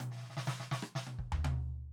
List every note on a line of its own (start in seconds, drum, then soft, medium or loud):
0.03 hi-hat pedal medium
0.03 high tom loud
0.11 snare soft
0.16 snare soft
0.19 snare soft
0.23 snare soft
0.30 snare soft
0.37 snare medium
0.45 snare medium
0.45 hi-hat pedal medium
0.60 snare medium
0.71 snare medium
0.82 cross-stick medium
0.95 snare medium
1.07 high tom medium
1.19 kick medium
1.32 floor tom loud
1.45 high tom loud